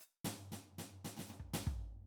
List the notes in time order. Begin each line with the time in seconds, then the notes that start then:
0.00 hi-hat pedal
0.25 snare, floor tom
0.52 snare, floor tom
0.78 snare, floor tom
1.05 snare, floor tom
1.17 snare, floor tom
1.27 floor tom, hi-hat pedal
1.31 snare
1.40 kick
1.53 snare, floor tom
1.67 kick